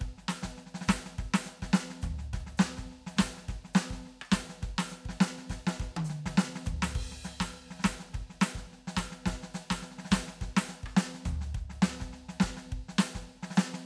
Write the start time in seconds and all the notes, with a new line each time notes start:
0.01 kick, snare
0.08 kick
0.18 snare
0.29 snare, hi-hat pedal
0.43 kick, snare
0.58 snare
0.67 snare
0.75 snare
0.81 snare
0.88 kick, snare, hi-hat pedal
1.06 snare
1.19 kick, snare
1.25 kick
1.34 snare
1.44 snare, hi-hat pedal
1.62 kick, snare
1.73 snare
1.90 snare
2.02 kick, floor tom, hi-hat pedal
2.12 kick
2.19 snare
2.33 kick, snare
2.41 kick
2.47 snare
2.58 snare, hi-hat pedal
2.77 kick, snare
2.91 snare
3.07 snare
3.18 kick, snare, hi-hat pedal
3.26 kick
3.38 snare
3.49 kick, snare
3.55 kick
3.65 snare
3.74 snare, hi-hat pedal
3.91 kick, snare
4.06 snare
4.22 cross-stick
4.32 kick, snare, hi-hat pedal
4.38 kick
4.50 snare
4.62 kick, snare
4.69 kick
4.73 kick
4.78 snare
4.89 snare, hi-hat pedal
5.06 kick, snare
5.21 snare
5.38 snare
5.50 kick, snare, hi-hat pedal
5.56 kick
5.67 snare
5.80 kick, snare
5.86 kick
5.91 kick
5.97 high tom
6.05 hi-hat pedal
6.09 snare
6.26 kick, snare
6.38 snare
6.56 snare
6.66 kick, floor tom, hi-hat pedal
6.74 kick
6.82 snare
6.95 kick, crash
7.06 kick
7.09 kick, snare
7.24 snare, hi-hat pedal
7.40 kick, snare
7.52 snare
7.60 snare
7.67 snare
7.71 snare
7.80 snare, hi-hat pedal
7.84 kick, snare
8.00 snare
8.14 kick, snare
8.21 kick
8.30 snare
8.41 snare, hi-hat pedal
8.55 kick, snare
8.73 snare
8.88 snare
8.97 kick, snare, hi-hat pedal
9.12 snare
9.26 kick, snare
9.33 kick
9.43 snare
9.54 snare, hi-hat pedal
9.71 kick, snare
9.82 snare
9.91 snare
9.98 snare
10.05 snare
10.11 kick, snare, hi-hat pedal
10.16 snare
10.28 snare
10.41 kick, snare
10.48 kick
10.57 snare
10.67 snare, hi-hat pedal
10.84 kick, cross-stick
10.97 snare
11.15 snare
11.26 kick, floor tom, hi-hat pedal
11.32 kick
11.34 kick
11.41 snare
11.55 kick, snare
11.62 kick
11.70 snare
11.82 snare, hi-hat pedal
12.00 kick, snare
12.13 snare
12.29 snare
12.40 kick, snare, hi-hat pedal
12.57 snare
12.69 kick, snare
12.78 kick
12.89 snare
12.99 snare, hi-hat pedal
13.15 kick, snare
13.27 snare
13.37 snare
13.43 snare
13.51 snare
13.56 snare, hi-hat pedal
13.74 snare